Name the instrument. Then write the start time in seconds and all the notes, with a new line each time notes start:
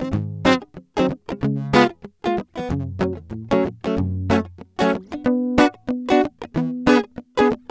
acoustic guitar
0.00 D#3 C4
0.13 G#2 D#3
0.46 F#3 C4 D#4 G#4
0.97 D3 F#3 C4 D#4 G#4
1.33 G#3
1.42 C#3 G#3
1.74 G#3 B3 F4
2.27 G#3 F4
2.58 B3
2.70 F#2 C#3
3.02 F#3
3.30 A2
3.52 F#3 A3 C#4
3.86 F#3 A3 C#4
3.98 F#2 C3
4.31 F#3 A3 C#4
4.79 F#3 A3 C#4 F#4
5.15 D4
5.26 B3 D4
5.59 B3 D4 F#4 B4
5.89 B3
6.09 B3 D4 F#4 B4
6.55 E3 B3
6.88 B3 D4 G#4 B4
7.38 B3 G#4 B4